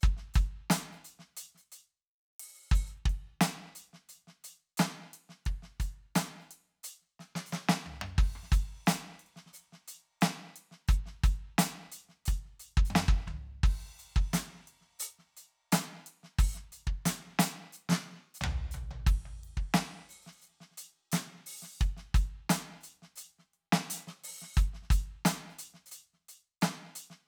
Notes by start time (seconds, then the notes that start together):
0.01 open hi-hat, kick, hi-hat pedal
0.17 snare
0.34 closed hi-hat, kick
0.70 closed hi-hat, snare
0.93 snare, hi-hat pedal
1.05 closed hi-hat
1.19 snare
1.37 open hi-hat
1.55 snare, hi-hat pedal
1.72 closed hi-hat
2.40 open hi-hat
2.72 open hi-hat, kick
3.06 kick, closed hi-hat
3.27 kick
3.41 closed hi-hat, snare
3.75 closed hi-hat
3.93 snare
4.09 closed hi-hat
4.27 snare
4.44 closed hi-hat
4.78 closed hi-hat, snare
5.13 closed hi-hat
5.29 snare
5.46 kick, closed hi-hat
5.63 snare
5.80 closed hi-hat, kick
6.15 closed hi-hat, snare
6.40 hi-hat pedal
6.51 closed hi-hat
6.84 closed hi-hat, hi-hat pedal
7.02 snare
7.20 snare
7.36 snare
7.46 hi-hat pedal
7.53 snare
7.69 snare, hi-hat pedal
7.86 mid tom
8.02 high tom
8.18 kick, crash
8.36 cross-stick
8.43 snare
8.52 closed hi-hat, kick
8.87 closed hi-hat, snare, hi-hat pedal
9.20 closed hi-hat
9.26 closed hi-hat
9.36 snare
9.46 snare
9.53 open hi-hat, hi-hat pedal
9.73 snare
9.88 closed hi-hat
10.21 closed hi-hat, snare
10.56 closed hi-hat
10.71 snare
10.88 open hi-hat, kick
11.06 snare
11.24 closed hi-hat, kick
11.58 closed hi-hat, snare
11.92 closed hi-hat
12.09 snare
12.26 closed hi-hat, kick
12.45 snare
12.60 closed hi-hat
12.77 kick
12.85 hi-hat pedal
12.90 high tom
12.95 snare
13.09 kick
13.27 kick, mid tom
13.64 kick, crash
13.79 snare
13.84 snare
13.95 closed hi-hat, hi-hat pedal
14.16 kick
14.34 closed hi-hat, snare
14.67 closed hi-hat
14.81 snare
14.86 snare
14.99 open hi-hat, hi-hat pedal
15.19 snare
15.24 snare
15.37 closed hi-hat
15.72 closed hi-hat, snare
16.06 open hi-hat
16.23 snare
16.39 open hi-hat, kick
16.54 snare, hi-hat pedal
16.72 closed hi-hat
16.87 kick
17.06 closed hi-hat, snare
17.39 closed hi-hat, snare
17.73 hi-hat pedal
17.89 snare
17.91 snare
18.34 hi-hat pedal
18.41 floor tom, mid tom
18.71 floor tom, hi-hat pedal
18.77 kick
18.91 floor tom
19.07 kick, ride
19.26 floor tom
19.44 ride
19.57 kick
19.74 snare, ride
20.09 open hi-hat
20.27 snare
20.42 hi-hat pedal
20.61 snare
20.71 snare
20.78 closed hi-hat
21.12 closed hi-hat, snare
21.46 open hi-hat
21.62 snare
21.79 closed hi-hat, kick, hi-hat pedal
21.97 snare
22.15 closed hi-hat, kick
22.50 closed hi-hat, snare
22.81 closed hi-hat, hi-hat pedal
23.02 snare
23.16 closed hi-hat, hi-hat pedal
23.39 snare
23.54 closed hi-hat
23.73 snare
23.90 closed hi-hat
24.07 snare
24.24 open hi-hat
24.42 snare
24.57 open hi-hat, kick, hi-hat pedal
24.74 snare
24.82 snare
24.90 closed hi-hat, kick
25.25 closed hi-hat, snare
25.50 hi-hat pedal
25.59 closed hi-hat
25.74 snare
25.86 hi-hat pedal
25.92 closed hi-hat
26.13 snare
26.19 snare
26.23 snare
26.29 closed hi-hat
26.62 closed hi-hat, snare
26.95 closed hi-hat
27.10 snare